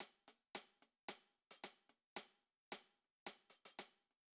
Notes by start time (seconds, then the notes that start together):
0.01 closed hi-hat
0.28 closed hi-hat
0.55 closed hi-hat
0.82 closed hi-hat
1.08 closed hi-hat
1.51 closed hi-hat
1.64 closed hi-hat
1.89 closed hi-hat
2.16 closed hi-hat
2.72 closed hi-hat
3.04 closed hi-hat
3.26 closed hi-hat
3.50 closed hi-hat
3.65 closed hi-hat
3.79 closed hi-hat
4.11 closed hi-hat